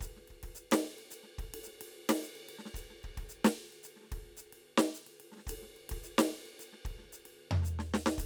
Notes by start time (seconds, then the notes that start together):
0.01 kick, hi-hat pedal, ride
0.16 snare
0.28 kick, ride
0.43 kick, ride
0.55 hi-hat pedal
0.71 snare, ride
0.99 snare, ride
1.11 hi-hat pedal, ride
1.23 snare
1.38 kick, ride
1.54 ride
1.63 snare, hi-hat pedal
1.81 ride
2.09 snare, ride
2.23 hi-hat pedal
2.35 ride
2.48 hi-hat pedal, ride
2.59 snare
2.65 snare
2.74 kick, hi-hat pedal, ride
2.90 snare
3.03 kick, ride
3.17 kick, ride
3.29 hi-hat pedal
3.45 snare, ride
3.64 snare
3.73 ride
3.83 hi-hat pedal, ride
3.96 snare
4.00 snare
4.03 snare
4.07 snare
4.12 kick, ride
4.24 snare
4.28 snare
4.37 hi-hat pedal
4.41 ride
4.53 ride
4.78 snare, ride
4.94 hi-hat pedal
5.07 ride
5.20 ride
5.32 snare
5.36 snare
5.39 snare
5.47 kick, hi-hat pedal, ride
5.62 snare
5.76 ride
5.89 kick, ride
6.04 hi-hat pedal
6.18 snare, ride
6.31 snare
6.46 ride
6.60 hi-hat pedal, ride
6.73 snare
6.85 kick, ride
6.98 snare
7.02 snare
7.12 hi-hat pedal, ride
7.25 ride
7.51 floor tom
7.62 snare, hi-hat pedal
7.79 snare
7.94 snare
8.06 snare
8.18 kick, hi-hat pedal, ride